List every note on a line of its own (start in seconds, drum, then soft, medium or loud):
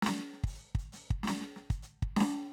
0.02 snare medium
0.02 hi-hat pedal medium
0.06 snare loud
0.19 snare soft
0.33 snare soft
0.44 open hi-hat medium
0.44 kick soft
0.55 hi-hat pedal medium
0.75 open hi-hat medium
0.75 kick soft
0.92 snare soft
0.92 hi-hat pedal medium
1.11 kick soft
1.23 snare medium
1.27 snare loud
1.41 snare soft
1.56 snare soft
1.70 closed hi-hat medium
1.70 kick soft
1.83 hi-hat pedal medium
2.02 kick soft
2.17 snare loud
2.21 snare loud